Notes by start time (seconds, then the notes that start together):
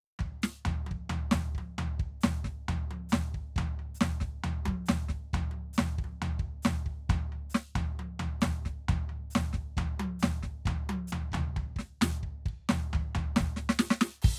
0.19 kick, floor tom
0.42 snare, hi-hat pedal
0.65 kick, floor tom
0.86 high tom
0.91 kick
1.09 floor tom
1.15 kick
1.31 snare, floor tom, hi-hat pedal
1.55 kick, high tom
1.78 floor tom
1.99 kick
2.21 snare, floor tom, hi-hat pedal
2.44 kick, snare
2.68 kick, floor tom
2.91 high tom
3.09 snare, floor tom, hi-hat pedal
3.34 kick
3.56 kick, floor tom
3.79 floor tom
3.94 hi-hat pedal
4.01 snare, floor tom
4.20 kick, snare
4.44 floor tom
4.65 kick, high tom
4.86 snare, floor tom, hi-hat pedal
5.09 kick, snare
5.33 kick, floor tom
5.51 high tom
5.73 hi-hat pedal
5.78 snare, floor tom
5.98 kick
6.04 high tom
6.22 floor tom
6.39 kick
6.62 snare, floor tom, hi-hat pedal
6.86 kick
7.09 kick, floor tom
7.32 floor tom
7.50 hi-hat pedal
7.54 snare
7.75 kick, floor tom
7.99 high tom
8.19 floor tom
8.41 snare, floor tom, hi-hat pedal
8.65 kick, snare
8.88 kick, floor tom
9.09 floor tom
9.30 hi-hat pedal
9.35 snare, floor tom
9.53 kick, snare
9.77 kick, floor tom
9.99 high tom
10.19 snare, floor tom, hi-hat pedal
10.43 kick, snare
10.65 kick, floor tom
10.78 kick
10.89 high tom
11.07 hi-hat pedal
11.12 floor tom
11.32 kick, floor tom, mid tom
11.56 kick, floor tom
11.76 kick, snare
12.01 snare, floor tom, hi-hat pedal
12.23 kick
12.46 kick, floor tom
12.69 snare, floor tom
12.93 kick, floor tom
13.15 kick, floor tom
13.36 kick, snare, floor tom, hi-hat pedal
13.56 snare
13.69 snare
13.79 snare
13.90 snare
14.01 snare
14.22 kick, crash